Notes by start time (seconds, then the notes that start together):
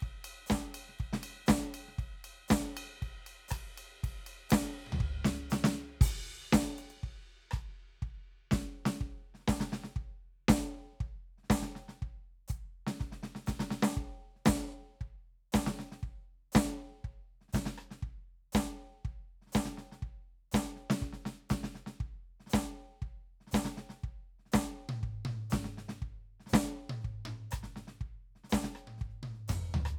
0.01 kick, ride
0.25 ride bell
0.47 snare, hi-hat pedal
0.52 kick
0.75 ride bell
0.89 snare
0.99 kick, ride
1.13 snare
1.24 ride bell
1.47 kick, snare, hi-hat pedal
1.74 ride bell
1.88 snare
1.95 kick, hi-hat pedal
2.00 ride
2.25 ride bell
2.49 kick, snare, hi-hat pedal, ride
2.77 ride bell
3.02 kick, ride
3.27 ride bell
3.49 kick, cross-stick, hi-hat pedal, ride
3.78 ride bell
4.04 kick, ride
4.27 ride bell
4.50 kick, snare, hi-hat pedal, ride
4.87 high tom
4.93 floor tom
5.01 kick
5.25 snare
5.51 snare, hi-hat pedal
5.64 snare
6.01 open hi-hat, kick, crash
6.52 kick, snare, hi-hat pedal
6.79 closed hi-hat
6.91 closed hi-hat
7.04 kick
7.51 kick, cross-stick
7.56 cross-stick
8.03 kick
8.52 kick, snare
8.86 snare
9.01 kick
9.34 snare
9.40 snare
9.48 kick, snare
9.61 snare
9.73 snare
9.84 snare
9.96 kick
10.49 kick, snare
11.01 kick
11.38 snare
11.44 snare
11.50 kick, snare, hi-hat pedal
11.62 snare
11.76 snare
11.89 snare
12.02 kick
12.48 kick, hi-hat pedal
12.87 snare
13.00 kick, snare
13.12 snare
13.23 snare
13.35 snare
13.47 kick, snare, hi-hat pedal
13.60 snare
13.71 snare
13.83 snare
13.97 kick
14.29 snare
14.36 snare
14.40 snare
14.46 kick, snare, hi-hat pedal
15.01 kick
15.53 kick, snare, hi-hat pedal
15.67 snare
15.79 snare
15.92 snare
15.99 hi-hat pedal
16.03 kick
16.52 kick, snare, hi-hat pedal
17.05 kick
17.41 snare
17.49 snare
17.53 kick, snare, hi-hat pedal
17.66 snare
17.78 cross-stick
17.91 snare
18.03 kick
18.53 kick, snare, hi-hat pedal
19.05 kick
19.42 snare
19.47 snare
19.53 kick, snare, hi-hat pedal
19.65 snare
19.78 snare
19.92 snare
20.03 kick
20.52 kick, snare, hi-hat pedal
20.76 snare
20.90 snare
21.02 kick, snare
21.13 snare
21.26 snare
21.50 kick, snare, hi-hat pedal
21.64 snare
21.75 snare
21.87 snare
22.01 kick
22.40 snare
22.47 snare, hi-hat pedal
22.54 kick, snare
23.02 kick
23.41 snare
23.47 snare
23.52 kick, snare, hi-hat pedal
23.65 snare
23.77 snare
23.90 snare
24.01 kick, hi-hat pedal
24.39 snare
24.46 snare
24.52 kick, snare, hi-hat pedal
24.89 high tom
25.03 kick
25.26 high tom
25.51 kick, snare, hi-hat pedal
25.65 snare
25.78 snare
25.89 snare
26.02 kick
26.40 snare
26.46 snare, hi-hat pedal
26.50 kick, snare
26.54 snare
26.61 snare
26.80 snare
26.90 high tom
27.01 snare
27.05 kick
27.26 high tom
27.51 kick, cross-stick, hi-hat pedal
27.63 snare
27.76 snare
27.88 snare
28.01 kick
28.36 snare
28.44 snare
28.50 kick, snare, hi-hat pedal
28.64 snare
28.75 cross-stick
28.88 high tom
28.98 kick, snare
29.09 snare
29.23 high tom
29.34 snare
29.48 kick, hi-hat pedal, mid tom
29.63 snare
29.74 floor tom
29.86 cross-stick